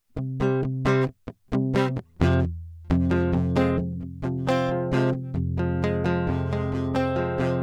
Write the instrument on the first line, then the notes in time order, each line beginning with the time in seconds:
acoustic guitar
0.19 C3
0.42 C3 G3 C4
0.65 C3
0.87 C3 G3 C4
1.54 C3 G3
1.76 G3 C4
2.23 E2 C3 F3 G#3
2.93 F2 C3
3.12 F3 G#3
3.35 F2 C3
3.58 G#3 C4 F4
3.80 F2 C3
4.24 C3 F3
4.49 C4 F4
4.71 F3
4.94 C3 F3 G#3
5.36 F2 C3
5.59 F3 G#3
5.85 G#3 C4
6.07 F3 G#3
6.29 F2 C3 F3
6.54 G#3 C4
6.74 C3 F3
6.96 G#3 C4
7.17 F3 G#3
7.41 C3 F3 G#3